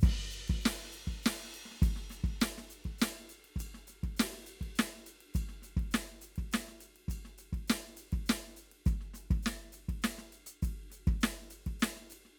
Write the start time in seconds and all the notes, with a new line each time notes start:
0.01 kick, hi-hat pedal
0.05 crash
0.31 hi-hat pedal, ride
0.48 kick, ride
0.61 hi-hat pedal
0.65 snare, crash
0.82 snare
0.92 hi-hat pedal, ride
1.07 kick, ride
1.23 snare, hi-hat pedal, crash
1.43 snare
1.54 hi-hat pedal, ride
1.65 snare
1.71 snare
1.75 snare
1.79 kick, snare, hi-hat pedal
1.83 ride
1.96 snare
2.10 snare, hi-hat pedal, ride
2.24 kick, ride
2.41 snare, hi-hat pedal, ride
2.58 snare
2.70 hi-hat pedal, ride
2.84 kick, ride
2.98 snare, hi-hat pedal, ride bell
3.20 snare
3.29 hi-hat pedal, ride
3.44 ride
3.56 kick, hi-hat pedal
3.60 ride bell
3.74 snare
3.87 snare, hi-hat pedal, ride
4.03 kick, ride
4.17 snare, hi-hat pedal
4.21 ride
4.33 snare
4.46 hi-hat pedal, ride
4.61 kick, ride
4.75 snare, hi-hat pedal, ride bell
4.95 snare
5.06 hi-hat pedal, ride
5.21 ride
5.34 kick, hi-hat pedal, ride bell
5.49 snare
5.62 snare, hi-hat pedal, ride
5.77 kick, ride
5.91 snare, hi-hat pedal, ride bell
6.05 snare
6.21 hi-hat pedal, ride
6.36 kick, ride
6.51 snare, hi-hat pedal, ride bell
6.68 snare
6.80 hi-hat pedal, ride
6.96 ride
7.08 kick, hi-hat pedal, ride bell
7.25 snare
7.38 snare, hi-hat pedal, ride
7.53 kick, ride
7.68 snare, hi-hat pedal, ride bell
7.97 hi-hat pedal, ride
8.12 kick, ride
8.26 snare, hi-hat pedal, ride bell
8.43 snare
8.56 hi-hat pedal, ride
8.72 snare, ride
8.86 kick, hi-hat pedal, ride bell
9.00 snare
9.14 snare, hi-hat pedal, ride
9.31 kick, ride
9.43 snare, hi-hat pedal
9.47 ride bell
9.59 snare
9.72 hi-hat pedal, ride
9.89 kick, ride
10.02 snare, hi-hat pedal, ride bell
10.18 snare
10.32 hi-hat pedal, ride
10.46 closed hi-hat
10.62 kick, hi-hat pedal, ride
10.90 snare, hi-hat pedal, ride
11.07 kick, ride
11.21 snare, hi-hat pedal, ride bell
11.36 snare
11.50 hi-hat pedal, ride
11.66 kick, ride
11.79 snare, hi-hat pedal, ride bell
11.96 snare
12.10 hi-hat pedal, ride
12.25 snare